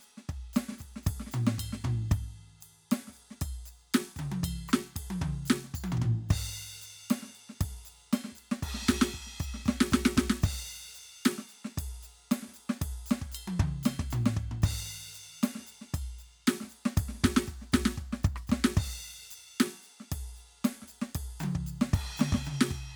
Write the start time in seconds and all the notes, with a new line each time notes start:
0.01 ride, percussion
0.17 snare
0.29 kick, ride bell
0.53 snare, ride, percussion
0.68 snare
0.72 snare
0.77 kick, snare, percussion
0.82 ride
0.96 snare
1.03 kick, ride, percussion
1.20 snare
1.27 snare
1.32 floor tom, percussion
1.47 snare
1.58 kick, ride bell
1.73 snare
1.81 kick, floor tom, percussion
2.09 kick, ride, percussion
2.61 ride, percussion
2.91 snare, ride
3.07 kick, snare
3.13 ride, percussion
3.31 snare
3.41 kick, ride bell
3.66 ride, percussion
3.94 snare, ride
4.16 kick, mid tom, percussion
4.32 high tom
4.43 kick, ride bell
4.67 kick, cross-stick, percussion
4.73 snare
4.96 kick, ride
5.10 high tom
5.22 kick, mid tom
5.46 ride bell, percussion
5.50 snare
5.64 snare
5.74 kick, percussion
5.84 high tom
5.92 floor tom
5.97 kick
6.02 floor tom
6.29 kick, crash, percussion
6.82 percussion
7.10 snare, ride
7.22 snare
7.25 snare
7.27 snare
7.35 ride
7.49 snare
7.61 kick, ride
7.85 ride, percussion
8.13 snare, ride bell
8.24 snare
8.28 kick, snare
8.35 ride, percussion
8.52 snare
8.63 kick, ride
8.74 snare
8.82 snare
8.88 kick, snare, percussion
9.01 snare
9.14 kick, snare
9.27 snare
9.31 snare
9.33 snare
9.36 snare, ride
9.40 kick, percussion
9.54 snare
9.59 snare
9.65 kick, snare, percussion
9.81 snare
9.91 kick, snare, percussion
10.05 snare
10.17 kick, snare
10.30 snare
10.42 kick, crash, percussion
10.94 ride, percussion
11.25 snare, ride
11.38 snare
11.49 ride, percussion
11.65 snare
11.78 kick, ride
12.03 ride, percussion
12.31 snare, ride
12.42 snare
12.45 kick, snare
12.48 snare
12.51 snare, percussion
12.57 ride
12.69 snare
12.82 kick, ride
13.06 ride bell, percussion
13.11 snare
13.22 kick, snare
13.32 ride bell, percussion
13.48 high tom
13.60 kick, mid tom
13.83 snare, ride bell, percussion
13.99 kick, snare
14.11 floor tom, percussion
14.26 snare
14.37 kick
14.51 floor tom
14.62 kick, crash, percussion
15.14 ride, percussion
15.43 snare, ride
15.55 snare
15.58 kick, snare
15.67 ride, percussion
15.81 snare
15.94 kick, ride bell
16.19 ride, percussion
16.47 snare, ride
16.60 kick, snare
16.63 snare
16.67 snare, percussion
16.72 ride
16.86 snare
16.97 kick, ride, percussion
17.09 snare
17.14 snare
17.19 snare
17.24 kick, snare, percussion
17.37 snare
17.47 kick, percussion
17.62 snare
17.72 kick, snare, percussion
17.85 snare
17.98 kick, snare
18.13 snare
18.23 kick, percussion
18.36 cross-stick
18.47 kick, percussion
18.52 snare
18.64 snare
18.77 kick, crash
19.31 ride, percussion
19.60 snare, ride
19.83 ride, percussion
20.00 snare
20.12 kick, ride
20.36 ride, percussion
20.65 snare, ride
20.82 kick, snare
20.88 ride, percussion
21.02 snare
21.15 kick, ride
21.40 mid tom, high tom, percussion
21.55 kick
21.67 ride, percussion, floor tom
21.81 snare
21.93 kick, ride
22.17 snare, mid tom, percussion
22.32 kick, snare
22.45 mid tom, percussion
22.61 snare
22.69 kick, percussion